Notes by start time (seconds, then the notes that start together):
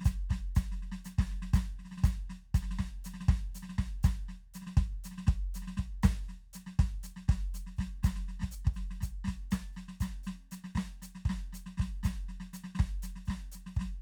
0.01 snare, hi-hat pedal
0.06 kick, snare
0.30 kick, snare
0.32 snare
0.56 kick, snare, hi-hat pedal
0.72 snare
0.82 snare
0.92 snare
1.05 snare, hi-hat pedal
1.18 kick, snare
1.31 snare
1.42 snare
1.54 kick, snare, hi-hat pedal
1.56 snare
1.79 snare
1.85 snare
1.92 snare
1.98 snare
2.01 kick, snare, hi-hat pedal
2.06 snare
2.30 snare
2.55 kick, snare, hi-hat pedal
2.63 snare
2.71 snare
2.79 kick, snare
3.05 snare, hi-hat pedal
3.14 snare
3.21 snare
3.29 kick, snare
3.55 snare, hi-hat pedal
3.63 snare
3.69 snare
3.79 kick, snare
4.03 kick, snare, hi-hat pedal
4.29 snare
4.54 snare, hi-hat pedal
4.62 snare
4.67 snare
4.77 kick, snare
5.04 snare, hi-hat pedal
5.12 snare
5.18 snare
5.27 kick, snare
5.55 snare, hi-hat pedal
5.62 snare
5.68 snare
5.77 kick, snare
6.03 kick, snare, hi-hat pedal
6.29 snare
6.54 snare, hi-hat pedal
6.67 snare
6.79 kick, snare
7.04 snare, hi-hat pedal
7.17 snare
7.29 kick, snare
7.31 snare
7.54 snare, hi-hat pedal
7.67 snare
7.77 kick, snare, hi-hat pedal
7.81 snare
8.03 kick, snare, hi-hat pedal
8.06 snare
8.16 snare
8.29 snare
8.40 snare
8.42 kick, snare
8.52 hi-hat pedal
8.65 kick, snare
8.74 snare, hi-hat pedal
8.91 snare
9.03 kick, hi-hat pedal
9.25 snare
9.28 kick, snare
9.51 kick, snare, hi-hat pedal
9.73 snare, hi-hat pedal
9.89 snare
10.01 kick, snare, hi-hat pedal
10.24 snare, hi-hat pedal
10.52 snare, hi-hat pedal
10.64 snare
10.74 kick, snare, hi-hat pedal
10.78 snare
11.02 snare, hi-hat pedal
11.15 snare
11.26 kick, snare
11.30 snare
11.53 snare, hi-hat pedal
11.66 snare
11.78 kick, snare
11.81 snare
12.04 kick, snare, hi-hat pedal
12.06 snare
12.29 snare
12.40 snare
12.54 snare, hi-hat pedal
12.64 snare
12.75 snare
12.79 kick, snare
13.03 snare, hi-hat pedal
13.16 snare
13.26 kick, snare, hi-hat pedal
13.30 snare
13.52 snare, hi-hat pedal
13.67 snare
13.75 kick, hi-hat pedal
13.79 snare
13.81 snare